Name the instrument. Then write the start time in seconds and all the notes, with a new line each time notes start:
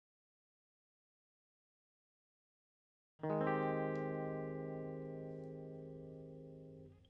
electric guitar
3.24 D#3
3.30 G#3
3.41 C4
3.47 G4